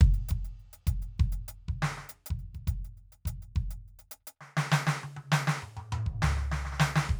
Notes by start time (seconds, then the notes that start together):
0.01 kick, closed hi-hat
0.15 closed hi-hat
0.29 closed hi-hat, kick
0.45 closed hi-hat
0.60 closed hi-hat
0.74 closed hi-hat
0.88 closed hi-hat, kick
1.03 closed hi-hat
1.19 kick, closed hi-hat
1.33 closed hi-hat
1.49 closed hi-hat
1.69 kick
1.83 snare
1.98 snare
2.10 closed hi-hat
2.27 closed hi-hat
2.31 kick
2.40 closed hi-hat
2.55 kick, closed hi-hat
2.68 closed hi-hat, kick
2.85 closed hi-hat
2.98 closed hi-hat
3.13 closed hi-hat
3.26 closed hi-hat, kick
3.43 closed hi-hat
3.56 kick, closed hi-hat
3.71 closed hi-hat
3.89 closed hi-hat
4.00 closed hi-hat
4.12 closed hi-hat
4.28 closed hi-hat
4.42 snare
4.58 snare
4.73 snare
4.88 snare
5.04 high tom
5.17 high tom
5.33 snare
5.48 snare
5.63 mid tom
5.78 mid tom
5.93 mid tom
6.07 kick
6.23 snare, floor tom
6.38 snare
6.52 snare
6.66 snare
6.73 snare
6.80 snare
6.96 snare
7.10 kick